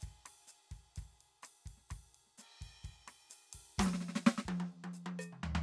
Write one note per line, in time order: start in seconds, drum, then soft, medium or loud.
0.01 kick soft
0.01 hi-hat pedal medium
0.01 ride soft
0.09 kick soft
0.26 cross-stick soft
0.26 snare soft
0.26 ride medium
0.48 hi-hat pedal medium
0.48 ride soft
0.72 kick soft
0.72 ride soft
0.96 kick soft
0.96 hi-hat pedal soft
0.96 ride soft
1.21 ride soft
1.43 cross-stick soft
1.43 snare soft
1.43 hi-hat pedal medium
1.43 ride medium
1.67 kick soft
1.67 ride soft
1.78 snare soft
1.90 kick soft
1.90 cross-stick soft
1.90 snare soft
1.90 hi-hat pedal soft
1.90 ride medium
2.15 ride soft
2.27 snare soft
2.38 snare soft
2.38 hi-hat pedal medium
2.38 ride soft
2.62 kick soft
2.62 ride soft
2.67 kick soft
2.84 kick soft
2.84 hi-hat pedal soft
2.84 ride soft
2.90 kick soft
3.08 cross-stick soft
3.08 snare soft
3.08 ride medium
3.31 hi-hat pedal medium
3.31 ride medium
3.54 kick soft
3.54 ride medium
3.79 kick soft
3.79 hi-hat pedal loud
3.79 high tom loud
3.85 kick soft
3.85 snare soft
3.94 snare soft
4.01 snare soft
4.09 snare soft
4.16 snare medium
4.27 snare loud
4.39 snare medium
4.46 kick soft
4.46 high tom loud
4.61 high tom medium
4.69 hi-hat pedal soft
4.85 high tom medium
4.94 hi-hat pedal medium
5.07 high tom medium
5.20 hi-hat pedal medium
5.20 percussion medium
5.33 mid tom soft
5.44 floor tom medium
5.56 floor tom loud